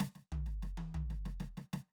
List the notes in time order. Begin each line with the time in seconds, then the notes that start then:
0.01 snare
0.16 snare
0.32 floor tom
0.47 snare
0.63 snare
0.78 high tom
0.95 floor tom
1.10 snare
1.26 snare
1.40 snare
1.57 snare
1.74 snare
1.89 cross-stick